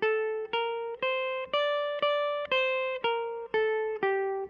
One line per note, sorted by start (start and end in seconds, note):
0.03 0.48 A4
0.54 1.00 A#4
1.03 1.48 C5
1.54 2.02 D5
2.03 2.48 D5
2.52 3.01 C5
3.05 3.50 A#4
3.54 3.99 A4
4.03 4.48 G4